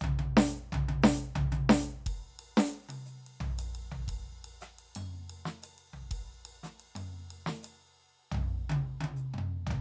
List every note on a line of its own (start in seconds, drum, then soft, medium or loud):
0.01 floor tom loud
0.01 hi-hat pedal soft
0.05 high tom loud
0.20 high tom loud
0.38 snare loud
0.54 hi-hat pedal soft
0.73 floor tom loud
0.73 high tom loud
0.89 high tom loud
1.03 snare loud
1.03 hi-hat pedal soft
1.36 floor tom loud
1.36 high tom loud
1.52 hi-hat pedal medium
1.52 high tom loud
1.70 snare loud
2.07 kick medium
2.07 ride loud
2.40 ride loud
2.57 snare loud
2.57 hi-hat pedal medium
2.74 ride medium
2.90 high tom medium
2.90 ride loud
3.07 hi-hat pedal soft
3.27 ride medium
3.41 floor tom loud
3.59 hi-hat pedal medium
3.59 ride loud
3.76 ride medium
3.92 floor tom medium
4.09 kick medium
4.09 ride loud
4.45 ride loud
4.62 cross-stick medium
4.62 hi-hat pedal medium
4.79 ride medium
4.96 mid tom loud
4.96 ride bell medium
5.10 hi-hat pedal soft
5.31 ride loud
5.46 snare medium
5.63 hi-hat pedal medium
5.63 ride loud
5.79 ride medium
5.94 floor tom medium
6.12 kick medium
6.12 ride loud
6.46 ride loud
6.64 snare medium
6.64 hi-hat pedal medium
6.81 ride medium
6.96 mid tom medium
6.96 ride loud
7.31 ride loud
7.47 snare medium
7.64 hi-hat pedal medium
7.64 ride loud
8.33 floor tom loud
8.33 mid tom loud
8.70 high tom loud
8.72 high tom loud
9.01 high tom loud
9.05 high tom loud
9.17 hi-hat pedal soft
9.35 mid tom loud
9.39 mid tom loud
9.68 floor tom loud
9.71 floor tom loud